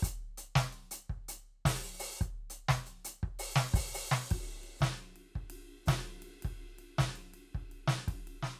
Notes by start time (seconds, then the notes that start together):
0.01 closed hi-hat, kick, hi-hat pedal
0.38 closed hi-hat
0.56 kick, snare
0.73 closed hi-hat
0.91 closed hi-hat
1.10 kick
1.29 closed hi-hat
1.65 open hi-hat, kick, snare
2.00 open hi-hat
2.19 closed hi-hat, kick, hi-hat pedal
2.50 closed hi-hat
2.69 kick, snare
2.86 closed hi-hat
3.05 closed hi-hat
3.23 kick
3.39 open hi-hat
3.56 snare
3.74 open hi-hat, kick
3.94 open hi-hat
4.11 snare
4.31 kick, ride
4.64 ride
4.79 kick, snare, hi-hat pedal
4.98 ride
5.16 ride
5.36 kick
5.50 ride
5.86 kick, snare, hi-hat pedal, ride
6.22 ride
6.43 kick, ride
6.69 ride
6.79 ride
6.98 kick, snare, hi-hat pedal
7.16 ride
7.34 ride
7.51 ride
7.55 kick
7.59 ride
7.72 ride
7.88 snare
8.08 kick, ride
8.27 ride
8.43 snare